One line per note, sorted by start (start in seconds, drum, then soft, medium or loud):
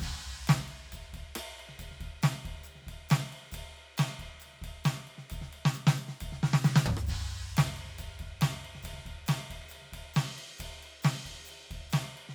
0.01 kick soft
0.01 percussion soft
0.01 crash loud
0.09 kick soft
0.12 kick soft
0.19 snare soft
0.48 snare loud
0.48 ride medium
0.48 percussion medium
0.58 snare soft
0.69 ride soft
0.79 snare soft
0.86 snare soft
0.93 kick soft
0.93 ride medium
0.93 percussion medium
0.99 snare soft
1.14 kick soft
1.14 ride medium
1.36 cross-stick medium
1.36 ride loud
1.36 percussion soft
1.60 ride soft
1.70 snare soft
1.80 kick soft
1.80 ride medium
1.80 percussion soft
1.92 snare soft
2.01 kick soft
2.01 ride medium
2.08 kick soft
2.23 snare loud
2.23 ride loud
2.23 percussion medium
2.46 kick soft
2.46 ride medium
2.52 kick soft
2.64 ride soft
2.64 percussion medium
2.76 snare soft
2.83 snare soft
2.88 kick soft
2.88 ride medium
2.93 kick soft
3.10 snare loud
3.10 ride loud
3.10 percussion medium
3.33 ride soft
3.44 snare soft
3.52 kick soft
3.52 snare soft
3.52 ride medium
3.52 percussion medium
3.77 ride soft
3.98 snare loud
3.98 ride bell loud
3.98 percussion medium
4.20 kick soft
4.20 ride medium
4.41 ride medium
4.41 percussion soft
4.47 snare soft
4.51 snare soft
4.54 snare soft
4.59 kick soft
4.59 snare soft
4.65 kick soft
4.65 ride medium
4.85 snare loud
4.85 ride medium
4.85 percussion medium
5.08 ride soft
5.19 snare soft
5.31 kick soft
5.31 ride medium
5.31 percussion soft
5.39 kick soft
5.39 snare soft
5.54 ride medium
5.66 snare loud
5.75 ride medium
5.75 percussion medium
5.88 snare loud
5.99 ride medium
6.09 snare soft
6.21 kick soft
6.21 ride medium
6.21 percussion medium
6.29 kick soft
6.33 snare soft
6.44 snare loud
6.54 snare loud
6.65 snare loud
6.65 percussion medium
6.77 snare loud
6.86 kick soft
6.86 floor tom loud
6.98 cross-stick medium
7.08 kick medium
7.08 percussion medium
7.08 crash loud
7.23 snare soft
7.27 snare soft
7.58 snare loud
7.58 ride loud
7.58 percussion medium
7.77 ride soft
7.86 snare soft
7.93 snare soft
7.99 kick soft
7.99 ride medium
7.99 percussion medium
8.03 snare soft
8.07 snare soft
8.18 kick soft
8.18 snare soft
8.18 ride medium
8.29 kick soft
8.42 snare loud
8.42 ride loud
8.42 percussion medium
8.66 ride soft
8.76 snare soft
8.84 kick soft
8.84 ride medium
8.84 percussion medium
8.91 kick soft
8.91 snare soft
8.99 snare soft
9.03 kick soft
9.03 snare soft
9.07 ride soft
9.12 kick soft
9.27 snare medium
9.27 ride loud
9.27 percussion medium
9.51 kick soft
9.51 ride medium
9.70 ride medium
9.70 percussion medium
9.78 snare soft
9.82 snare soft
9.86 snare soft
9.93 kick soft
9.93 ride medium
10.15 snare loud
10.15 percussion medium
10.15 ride medium
10.39 ride medium
10.59 kick soft
10.59 ride medium
10.59 percussion soft
10.66 kick soft
10.84 ride medium
11.03 snare loud
11.03 percussion medium
11.03 ride medium
11.26 kick soft
11.26 ride medium
11.46 ride medium
11.46 percussion medium
11.62 snare soft
11.72 kick soft
11.72 ride medium
11.91 snare medium
11.91 ride loud
11.91 percussion soft
12.18 ride soft
12.30 snare soft